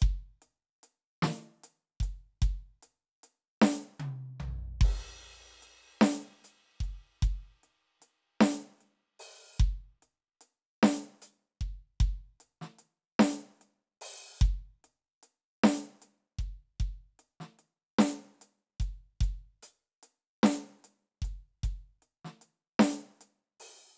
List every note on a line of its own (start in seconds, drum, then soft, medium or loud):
0.01 kick loud
0.01 closed hi-hat soft
0.01 hi-hat pedal soft
0.42 closed hi-hat soft
0.84 closed hi-hat medium
1.23 snare loud
1.23 closed hi-hat medium
1.64 closed hi-hat medium
2.01 kick medium
2.01 closed hi-hat medium
2.43 kick loud
2.43 closed hi-hat medium
2.83 closed hi-hat medium
3.24 closed hi-hat medium
3.62 open hi-hat medium
3.62 snare loud
4.00 high tom loud
4.41 floor tom loud
4.41 hi-hat pedal soft
4.82 kick loud
4.82 crash medium
5.21 closed hi-hat soft
5.63 closed hi-hat medium
6.02 closed hi-hat medium
6.02 snare loud
6.45 closed hi-hat medium
6.81 kick medium
6.81 closed hi-hat soft
7.23 kick loud
7.23 closed hi-hat medium
7.64 closed hi-hat soft
8.01 snare soft
8.01 closed hi-hat medium
8.41 closed hi-hat medium
8.41 snare loud
8.81 closed hi-hat soft
9.20 open hi-hat medium
9.59 kick loud
9.59 closed hi-hat soft
9.59 hi-hat pedal soft
10.03 closed hi-hat soft
10.42 closed hi-hat medium
10.84 snare loud
10.84 closed hi-hat soft
11.22 closed hi-hat medium
11.62 kick medium
11.62 closed hi-hat soft
12.01 kick loud
12.01 closed hi-hat medium
12.41 closed hi-hat medium
12.62 snare medium
12.79 closed hi-hat medium
13.20 closed hi-hat medium
13.20 snare loud
13.36 snare soft
13.62 closed hi-hat soft
14.02 open hi-hat loud
14.40 kick loud
14.40 hi-hat pedal soft
14.46 closed hi-hat soft
14.85 closed hi-hat soft
15.23 closed hi-hat medium
15.64 snare loud
15.64 closed hi-hat medium
16.02 closed hi-hat medium
16.39 kick medium
16.39 closed hi-hat soft
16.80 kick medium
16.80 closed hi-hat soft
17.20 closed hi-hat soft
17.41 snare soft
17.59 closed hi-hat soft
17.99 closed hi-hat medium
17.99 snare loud
18.42 closed hi-hat medium
18.80 kick medium
18.80 closed hi-hat medium
19.21 kick loud
19.21 closed hi-hat medium
19.63 closed hi-hat medium
20.04 closed hi-hat medium
20.44 snare loud
20.44 closed hi-hat medium
20.85 closed hi-hat medium
21.23 kick medium
21.23 closed hi-hat medium
21.64 kick medium
21.64 closed hi-hat medium
22.03 closed hi-hat soft
22.25 snare medium
22.42 closed hi-hat medium
22.80 closed hi-hat medium
22.80 snare loud
23.21 closed hi-hat medium
23.61 open hi-hat medium